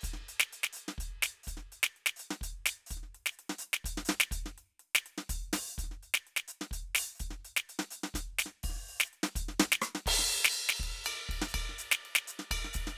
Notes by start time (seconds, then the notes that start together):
0.01 closed hi-hat, kick, hi-hat pedal
0.14 snare
0.21 snare
0.29 closed hi-hat
0.40 snare
0.53 closed hi-hat
0.64 snare
0.73 closed hi-hat, hi-hat pedal
0.88 snare
0.98 closed hi-hat, kick
1.23 closed hi-hat, snare
1.44 kick, hi-hat pedal
1.48 closed hi-hat
1.57 snare
1.72 closed hi-hat
1.83 snare
1.96 closed hi-hat
2.06 snare
2.16 closed hi-hat, hi-hat pedal
2.31 snare
2.41 closed hi-hat, kick
2.66 closed hi-hat, snare
2.87 hi-hat pedal
2.91 closed hi-hat, kick
2.97 snare
3.03 snare
3.15 closed hi-hat
3.26 snare
3.31 hi-hat pedal
3.39 closed hi-hat
3.50 snare
3.59 closed hi-hat, hi-hat pedal
3.73 snare
3.85 closed hi-hat, kick
3.98 snare
4.05 snare, hi-hat pedal
4.20 snare
4.32 closed hi-hat, kick
4.37 kick
4.46 snare
4.58 closed hi-hat
4.80 closed hi-hat
4.95 snare
5.06 closed hi-hat
5.18 snare
5.30 open hi-hat, kick
5.35 kick
5.53 open hi-hat, snare
5.72 hi-hat pedal
5.78 closed hi-hat, kick
5.84 kick, snare
5.91 snare
6.03 closed hi-hat
6.14 snare
6.27 closed hi-hat
6.37 snare
6.48 hi-hat pedal
6.61 snare
6.71 closed hi-hat, kick
6.95 open hi-hat, snare
7.15 hi-hat pedal
7.20 closed hi-hat, kick
7.31 snare
7.40 snare
7.45 closed hi-hat
7.57 snare
7.69 closed hi-hat
7.79 snare
7.91 closed hi-hat, hi-hat pedal
8.04 snare
8.14 closed hi-hat, kick, snare
8.39 closed hi-hat, snare
8.46 snare
8.63 open hi-hat, kick
8.70 kick, snare
8.76 snare
8.88 open hi-hat
9.00 snare
9.04 hi-hat pedal
9.13 closed hi-hat
9.23 snare
9.36 closed hi-hat, kick
9.42 kick
9.45 kick, snare
9.60 snare
9.72 snare
9.82 cross-stick, hi-hat pedal
9.95 snare
10.06 kick, crash
10.19 snare
10.33 ride
10.45 snare
10.52 hi-hat pedal
10.57 ride
10.69 snare
10.75 hi-hat pedal
10.80 kick, ride
10.86 kick
10.88 kick
11.04 hi-hat pedal, ride bell
11.29 kick, ride
11.35 kick
11.38 kick
11.42 snare
11.49 hi-hat pedal
11.54 kick, ride bell
11.61 kick
11.69 snare
11.79 hi-hat pedal, ride
11.92 snare
12.05 ride
12.15 snare
12.28 hi-hat pedal, ride
12.39 snare
12.51 kick, ride bell
12.57 kick
12.65 snare
12.73 kick, hi-hat pedal, ride
12.87 snare